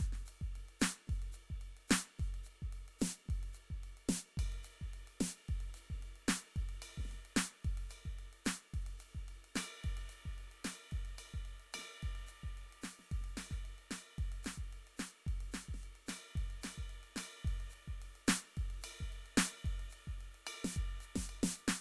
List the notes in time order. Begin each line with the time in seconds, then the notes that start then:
0.01 kick, ride
0.13 snare, ride
0.22 snare
0.26 hi-hat pedal, ride
0.42 kick
0.56 snare, ride
0.69 ride
0.80 snare, hi-hat pedal, ride
1.08 kick, snare, ride
1.14 snare
1.18 snare
1.23 ride
1.33 hi-hat pedal, ride
1.51 kick
1.62 ride
1.78 ride
1.89 snare, hi-hat pedal, ride
2.20 kick, snare, ride
2.35 ride
2.44 hi-hat pedal, ride
2.63 kick
2.73 ride
2.89 ride
2.99 snare, hi-hat pedal, ride
3.26 kick, snare
3.31 ride
3.37 kick
3.44 ride
3.54 hi-hat pedal, ride
3.71 kick
3.84 ride
3.98 ride
4.09 snare, hi-hat pedal, ride
4.38 kick, ride bell
4.44 kick
4.53 ride
4.64 hi-hat pedal, ride
4.82 kick
4.94 ride
5.08 ride
5.21 snare, hi-hat pedal, ride
5.49 kick, ride
5.61 ride
5.75 hi-hat pedal, ride
5.91 kick
5.96 snare
6.01 snare, ride
6.17 ride
6.29 snare, hi-hat pedal, ride
6.57 kick, ride
6.62 kick
6.70 ride
6.83 hi-hat pedal, ride bell
6.98 kick, snare
7.06 snare
7.10 snare, ride
7.14 snare
7.26 ride
7.37 snare, hi-hat pedal, ride
7.65 kick, ride
7.78 ride
7.90 hi-hat pedal, ride bell
8.06 kick
8.20 ride
8.34 ride
8.45 snare, hi-hat pedal, ride
8.75 kick, snare, ride
8.87 ride
9.00 hi-hat pedal, ride
9.16 kick
9.29 ride
9.45 ride
9.56 snare, hi-hat pedal, ride bell
9.85 kick, ride
9.98 ride
10.10 hi-hat pedal, ride
10.26 kick
10.39 ride
10.52 ride
10.65 snare, hi-hat pedal, ride bell
10.92 kick, ride
11.06 ride
11.18 hi-hat pedal, ride bell
11.35 kick
11.46 ride
11.61 ride
11.73 snare, hi-hat pedal, ride bell
11.79 snare
12.03 kick, ride
12.16 ride
12.27 hi-hat pedal, ride
12.44 kick
12.58 ride
12.73 ride
12.82 snare, hi-hat pedal, ride
13.00 snare
13.12 kick, ride
13.21 snare, ride
13.38 snare, hi-hat pedal, ride bell
13.51 kick, snare
13.66 ride
13.79 ride
13.92 snare, hi-hat pedal, ride bell
14.19 kick, ride
14.33 ride
14.44 snare, hi-hat pedal, ride
14.58 kick
14.74 ride
14.88 ride
14.98 snare, hi-hat pedal, ride
15.27 kick, ride
15.41 ride
15.52 snare, hi-hat pedal, ride
15.69 kick
15.75 snare
15.84 ride
15.96 ride
16.07 snare, hi-hat pedal, ride bell
16.36 kick, ride
16.42 kick
16.51 ride
16.62 snare, hi-hat pedal, ride bell
16.79 kick
16.90 ride
17.04 ride
17.16 snare, hi-hat pedal, ride bell
17.46 kick, ride
17.51 kick
17.61 ride
17.70 hi-hat pedal, ride
17.89 kick
18.03 ride
18.16 ride
18.28 snare, hi-hat pedal, ride
18.58 kick, ride
18.71 ride
18.82 hi-hat pedal, ride bell
19.01 kick, snare
19.06 snare
19.13 ride
19.27 ride
19.38 snare, hi-hat pedal, ride bell
19.65 kick, ride
19.80 ride
19.91 hi-hat pedal, ride
20.08 kick
20.19 snare, ride
20.35 ride
20.47 hi-hat pedal, ride bell
20.65 snare
20.77 kick, ride
21.01 hi-hat pedal, ride
21.16 kick, snare
21.30 ride bell
21.44 snare
21.56 hi-hat pedal, ride
21.69 snare